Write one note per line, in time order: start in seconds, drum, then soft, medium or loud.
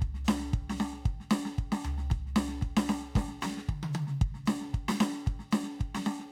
0.01 kick medium
0.01 snare soft
0.15 snare soft
0.25 snare loud
0.25 hi-hat pedal medium
0.40 snare soft
0.52 kick medium
0.52 snare soft
0.70 snare loud
0.77 snare loud
0.77 hi-hat pedal medium
0.93 snare soft
1.06 kick medium
1.06 snare soft
1.21 snare soft
1.30 snare loud
1.30 hi-hat pedal medium
1.46 snare medium
1.54 hi-hat pedal soft
1.58 kick medium
1.58 snare soft
1.72 snare loud
1.84 floor tom loud
1.84 hi-hat pedal medium
1.98 snare soft
2.11 kick medium
2.11 snare medium
2.27 snare soft
2.36 snare loud
2.36 hi-hat pedal medium
2.49 snare soft
2.60 kick medium
2.60 snare soft
2.60 hi-hat pedal soft
2.77 snare loud
2.89 snare loud
2.89 hi-hat pedal medium
3.01 snare soft
3.16 kick medium
3.16 snare loud
3.28 snare soft
3.41 snare loud
3.41 hi-hat pedal medium
3.58 snare soft
3.69 kick medium
3.69 high tom loud
3.83 high tom loud
3.94 hi-hat pedal medium
3.94 high tom loud
4.07 snare soft
4.22 kick loud
4.35 snare soft
4.46 snare loud
4.46 hi-hat pedal medium
4.61 snare soft
4.74 kick medium
4.74 snare soft
4.89 snare loud
4.99 snare loud
4.99 hi-hat pedal medium
5.13 snare soft
5.27 kick medium
5.27 snare soft
5.40 snare soft
5.52 snare loud
5.52 hi-hat pedal medium
5.63 snare medium
5.80 kick soft
5.80 snare soft
5.95 snare loud
6.05 snare loud
6.05 hi-hat pedal medium
6.19 snare soft